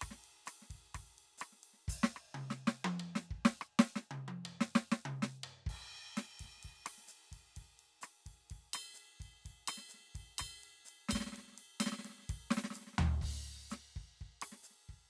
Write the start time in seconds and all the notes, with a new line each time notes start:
0.01 kick, cross-stick, hi-hat pedal, ride
0.08 kick, snare
0.24 ride
0.46 cross-stick, hi-hat pedal, ride
0.62 snare
0.70 kick, ride
0.75 kick
0.94 kick, cross-stick, hi-hat pedal, ride
1.00 kick
1.18 ride
1.38 cross-stick, hi-hat pedal, ride
1.52 snare
1.63 ride
1.73 snare
1.88 kick, hi-hat pedal
1.94 kick
2.03 snare
2.16 cross-stick
2.34 mid tom
2.50 snare
2.67 snare
2.85 high tom
3.00 floor tom
3.16 snare
3.31 kick
3.36 kick
3.45 snare
3.61 cross-stick
3.79 snare
3.96 snare
4.11 mid tom
4.28 open hi-hat, high tom
4.45 floor tom
4.61 snare
4.75 snare
4.92 snare
5.05 mid tom
5.22 snare
5.44 floor tom
5.66 kick, ride
5.75 cross-stick
6.17 snare, hi-hat pedal, ride
6.40 kick, snare, ride
6.45 kick
6.57 snare
6.62 kick, hi-hat pedal, ride
6.69 kick
6.86 cross-stick, ride
6.98 snare
7.08 snare, hi-hat pedal, ride
7.32 kick, ride
7.37 kick
7.55 kick, hi-hat pedal, ride
7.62 kick
7.79 ride
8.01 cross-stick, hi-hat pedal, ride
8.26 kick, ride
8.49 kick, hi-hat pedal, ride
8.74 cross-stick, ride bell
8.94 hi-hat pedal, ride
9.20 kick, ride
9.25 kick
9.41 hi-hat pedal
9.45 kick, ride
9.50 kick
9.68 cross-stick, ride bell
9.77 snare
9.89 hi-hat pedal, ride
9.94 snare
10.00 snare
10.03 snare
10.07 snare
10.15 kick, ride
10.20 kick
10.37 cross-stick, hi-hat pedal, ride bell
10.41 kick
10.46 kick
10.64 ride
10.85 hi-hat pedal, ride
11.09 kick, snare, ride bell
11.15 kick, snare
11.20 snare
11.26 snare
11.32 snare, ride
11.38 snare
11.43 snare
11.48 snare
11.52 snare
11.57 snare, ride
11.80 snare, hi-hat pedal, ride bell
11.86 snare
11.92 snare
11.99 snare
12.05 snare, ride
12.10 snare
12.14 snare
12.18 snare
12.22 snare
12.27 kick, snare, hi-hat pedal, ride
12.36 kick
12.51 snare, ride
12.57 snare
12.64 snare
12.70 snare, hi-hat pedal
12.76 snare, ride
12.81 snare
12.87 snare
12.93 snare
12.98 kick, floor tom
13.21 kick, crash
13.28 kick
13.70 snare, hi-hat pedal
13.96 kick
14.16 hi-hat pedal
14.21 kick
14.26 kick
14.42 cross-stick, ride
14.52 snare
14.63 hi-hat pedal
14.70 snare
14.89 kick
14.94 kick